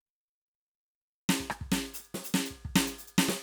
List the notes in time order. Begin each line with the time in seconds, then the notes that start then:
1.29 snare
1.40 kick
1.50 cross-stick
1.61 kick
1.72 snare
1.87 closed hi-hat
1.94 closed hi-hat
2.04 closed hi-hat
2.14 snare
2.24 closed hi-hat
2.34 snare
2.46 closed hi-hat
2.51 kick
2.65 kick
2.76 snare
2.87 closed hi-hat
2.98 closed hi-hat
3.07 closed hi-hat
3.18 snare
3.29 snare